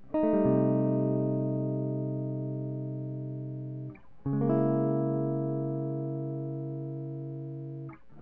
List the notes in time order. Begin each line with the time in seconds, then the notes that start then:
0.15 D#4
0.24 A3
0.34 G3
0.47 C3
4.28 C#3
4.34 G#3
4.42 A#3
4.50 E4